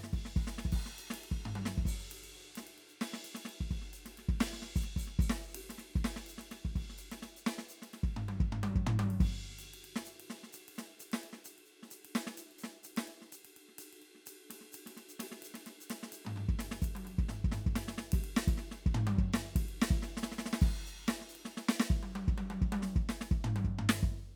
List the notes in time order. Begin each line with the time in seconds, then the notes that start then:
0.03 snare
0.13 kick, ride
0.25 snare
0.36 kick, crash
0.47 snare
0.58 snare
0.65 kick
0.72 kick, crash
0.86 snare
0.98 hi-hat pedal, ride
1.10 snare, ride
1.24 ride
1.31 kick
1.45 floor tom
1.55 high tom
1.65 snare
1.78 kick
1.85 open hi-hat, kick, ride
2.11 ride
2.24 ride
2.34 ride
2.55 snare, ride
2.67 ride
2.78 ride
2.89 hi-hat pedal
3.01 snare, ride
3.13 snare
3.24 hi-hat pedal, ride
3.34 snare, ride
3.45 snare
3.49 ride
3.60 kick
3.71 kick, ride
3.81 snare
3.93 hi-hat pedal, ride
4.05 snare, ride
4.17 snare, ride
4.29 kick
4.40 snare, ride
4.53 snare
4.62 snare
4.75 open hi-hat, kick
4.81 snare, hi-hat pedal
4.96 open hi-hat, kick
5.02 hi-hat pedal
5.07 snare
5.19 open hi-hat, kick
5.29 snare
5.55 ride
5.69 snare, ride
5.78 snare, ride
5.95 kick, hi-hat pedal
6.04 snare, ride
6.16 snare
6.26 hi-hat pedal, ride
6.38 snare, ride
6.51 snare, ride
6.65 kick
6.75 kick, ride
6.89 snare
6.98 hi-hat pedal, ride
7.12 snare, ride
7.22 snare, ride
7.36 hi-hat pedal
7.46 snare, ride
7.58 snare
7.69 hi-hat pedal, ride
7.82 snare, ride
7.93 snare, ride
8.03 kick
8.16 floor tom
8.28 high tom
8.40 kick
8.52 floor tom
8.63 high tom
8.75 kick
8.87 floor tom
8.99 high tom
9.10 ride
9.20 kick, ride
9.51 snare
9.58 snare, hi-hat pedal, ride
9.74 hi-hat pedal, ride
9.84 ride
9.96 snare
10.05 hi-hat pedal, ride
10.20 ride
10.30 snare, ride
10.43 snare
10.53 hi-hat pedal, ride
10.68 ride
10.74 hi-hat pedal
10.78 snare, ride
10.99 hi-hat pedal, ride
11.12 snare, ride
11.23 ride
11.33 snare
11.44 hi-hat pedal, ride
11.58 ride
11.65 hi-hat pedal
11.70 ride
11.83 snare
11.90 hi-hat pedal, ride
12.05 ride
12.15 snare, ride
12.27 snare
12.37 hi-hat pedal, ride
12.51 ride
12.58 hi-hat pedal
12.62 snare, ride
12.83 hi-hat pedal, ride
12.96 snare, ride
13.07 ride
13.22 snare
13.32 hi-hat pedal, ride
13.45 ride
13.56 ride
13.68 snare
13.78 hi-hat pedal, ride
13.93 ride
14.02 ride
14.15 snare
14.21 snare
14.26 hi-hat pedal, ride
14.50 snare, ride
14.61 snare
14.72 hi-hat pedal, ride
14.86 snare, ride
14.97 snare, ride
15.09 hi-hat pedal
15.19 snare, ride
15.32 snare
15.42 hi-hat pedal, ride
15.54 snare, ride
15.66 snare, ride
15.80 hi-hat pedal
15.90 snare, ride
16.03 snare
16.12 hi-hat pedal, ride
16.25 floor tom, high tom
16.36 floor tom, high tom
16.49 kick
16.59 snare, ride
16.71 snare
16.82 kick, hi-hat pedal, ride
16.95 high tom, ride
17.05 high tom, ride
17.18 kick
17.29 snare, floor tom
17.44 kick
17.51 snare, floor tom
17.66 kick
17.75 snare, ride
17.88 snare
17.98 snare
18.12 kick, ride
18.24 ride
18.36 snare
18.47 kick, ride
18.57 snare
18.71 snare
18.86 kick
18.94 floor tom
19.07 high tom
19.18 kick
19.33 snare, ride
19.56 kick, ride
19.68 ride
19.82 snare
19.91 kick, ride
20.02 snare
20.17 snare
20.23 snare
20.32 snare
20.38 snare
20.46 snare
20.53 snare
20.61 kick, crash
20.87 hi-hat pedal
21.08 snare, ride
21.21 snare
21.29 hi-hat pedal
21.35 ride
21.45 snare
21.57 snare
21.68 snare
21.80 snare
21.90 kick
22.03 high tom
22.15 high tom
22.28 kick
22.38 high tom
22.50 high tom
22.62 kick
22.72 high tom
22.82 snare
22.96 kick
23.09 snare
23.21 snare
23.31 kick
23.44 floor tom
23.56 high tom
23.64 kick
23.79 floor tom
23.89 snare
24.03 kick